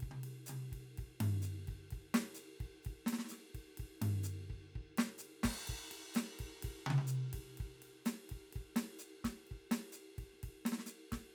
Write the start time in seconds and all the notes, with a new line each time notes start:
0.01 kick, ride
0.08 kick, mid tom
0.24 ride
0.47 hi-hat pedal, mid tom, ride
0.73 kick, ride
0.98 kick, ride
1.04 kick
1.21 floor tom, ride
1.43 hi-hat pedal, ride
1.68 kick, ride
1.74 kick
1.91 kick, ride
1.98 kick
2.15 snare, ride
2.35 snare, hi-hat pedal, ride
2.61 kick, ride
2.66 kick
2.83 kick, hi-hat pedal, ride
2.92 kick
3.07 snare, ride
3.13 snare
3.19 snare
3.25 snare
3.29 snare, hi-hat pedal, ride
3.38 snare
3.44 snare
3.49 snare
3.55 kick, snare, ride
3.59 snare
3.67 snare
3.70 snare
3.78 kick, ride
3.85 kick
4.02 floor tom, ride
4.24 hi-hat pedal
4.50 kick
4.56 kick
4.76 kick
4.81 kick
4.98 snare, ride
5.19 hi-hat pedal, ride
5.44 kick, snare, crash
5.51 kick
5.68 kick, ride
5.75 kick
5.92 ride
6.15 snare, hi-hat pedal, ride
6.40 kick, ride
6.46 kick
6.63 kick, ride
6.70 kick
6.87 mid tom
6.91 mid tom
6.99 mid tom
7.08 hi-hat pedal
7.34 kick, ride
7.40 kick
7.58 kick, ride
7.66 kick
7.83 ride
8.06 snare, hi-hat pedal, ride
8.30 kick, ride
8.37 kick
8.53 kick, ride
8.61 kick
8.76 snare, ride
8.99 hi-hat pedal, ride
9.25 kick, snare, ride
9.47 ride
9.52 kick
9.72 snare, ride
9.93 hi-hat pedal, ride
10.19 kick, ride
10.24 kick
10.33 snare
10.37 snare
10.44 kick, ride
10.49 kick
10.66 snare, ride
10.73 snare
10.79 snare
10.87 snare, hi-hat pedal
10.96 snare
11.13 kick, snare, ride
11.18 kick